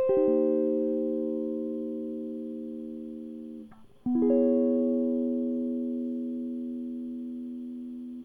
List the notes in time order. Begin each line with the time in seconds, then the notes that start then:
0.00 C5
0.10 G4
0.18 D#4
0.25 A#3
1.35 A#3
4.07 B3
4.16 E4
4.23 G#4
4.31 C#5